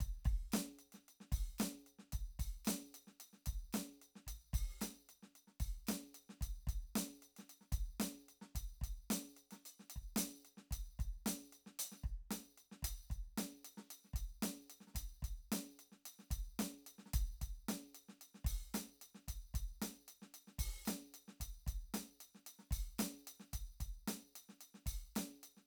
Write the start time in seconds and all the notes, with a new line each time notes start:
0.00 kick, closed hi-hat
0.25 kick, percussion
0.52 snare, closed hi-hat, hi-hat pedal
0.79 closed hi-hat
0.92 snare, closed hi-hat
1.08 closed hi-hat
1.20 snare
1.32 kick, percussion
1.58 snare, closed hi-hat, hi-hat pedal
1.86 closed hi-hat
1.99 snare
2.12 kick, closed hi-hat
2.39 kick, percussion
2.65 closed hi-hat, snare, hi-hat pedal
2.94 closed hi-hat
3.07 snare
3.20 closed hi-hat
3.33 snare
3.46 kick, closed hi-hat
3.73 snare, closed hi-hat, hi-hat pedal
4.02 closed hi-hat
4.15 snare
4.27 kick, closed hi-hat
4.53 kick, percussion
4.81 snare, closed hi-hat, hi-hat pedal
5.09 closed hi-hat
5.23 snare
5.35 closed hi-hat
5.47 snare
5.60 kick, percussion
5.87 snare, closed hi-hat, hi-hat pedal
6.14 closed hi-hat
6.29 snare
6.41 kick, closed hi-hat
6.67 kick, closed hi-hat
6.95 closed hi-hat, snare
7.22 closed hi-hat
7.36 snare, closed hi-hat
7.49 closed hi-hat
7.61 snare
7.72 kick, closed hi-hat
8.00 snare, closed hi-hat
8.28 closed hi-hat
8.41 snare
8.55 kick, closed hi-hat
8.81 kick, closed hi-hat
9.10 closed hi-hat, snare
9.36 closed hi-hat
9.51 snare, closed hi-hat
9.65 closed hi-hat
9.79 snare
9.90 closed hi-hat
9.96 kick
10.16 closed hi-hat, snare
10.45 closed hi-hat
10.57 snare
10.71 kick, closed hi-hat
10.99 kick, closed hi-hat
11.26 closed hi-hat, snare
11.52 closed hi-hat
11.66 snare
11.79 closed hi-hat
11.92 snare
12.04 kick, closed hi-hat
12.31 snare, closed hi-hat
12.57 closed hi-hat
12.71 snare
12.82 kick, closed hi-hat
13.10 kick, closed hi-hat
13.37 snare, closed hi-hat
13.65 closed hi-hat
13.77 snare
13.90 closed hi-hat
14.04 snare
14.13 kick, closed hi-hat
14.42 snare, closed hi-hat
14.70 closed hi-hat
14.80 snare
14.87 snare
14.94 kick, snare, closed hi-hat
15.22 kick, closed hi-hat
15.52 snare, closed hi-hat
15.79 closed hi-hat
15.92 snare
16.05 closed hi-hat
16.19 snare
16.30 kick, closed hi-hat
16.59 snare, closed hi-hat
16.86 closed hi-hat
16.98 snare
17.06 snare
17.13 kick, closed hi-hat
17.41 kick, closed hi-hat
17.68 snare, closed hi-hat
17.95 closed hi-hat
18.08 snare
18.21 closed hi-hat
18.34 snare
18.44 kick, percussion
18.74 snare, closed hi-hat, hi-hat pedal
19.01 closed hi-hat
19.15 snare
19.28 kick, closed hi-hat
19.54 kick, closed hi-hat
19.82 snare, closed hi-hat
20.08 closed hi-hat
20.22 snare
20.34 closed hi-hat
20.47 snare
20.58 kick, percussion
20.85 snare, closed hi-hat, hi-hat pedal
21.14 closed hi-hat
21.28 snare
21.40 kick, closed hi-hat
21.67 kick, closed hi-hat
21.94 snare, closed hi-hat
22.20 closed hi-hat
22.35 snare
22.46 closed hi-hat
22.59 snare
22.71 kick, percussion
22.99 snare, closed hi-hat, hi-hat pedal
23.27 closed hi-hat
23.40 snare
23.53 kick, closed hi-hat
23.80 kick, closed hi-hat
24.07 snare, closed hi-hat
24.35 closed hi-hat
24.49 snare
24.61 closed hi-hat
24.74 snare
24.86 kick, percussion
25.16 snare, closed hi-hat, hi-hat pedal
25.43 closed hi-hat
25.57 snare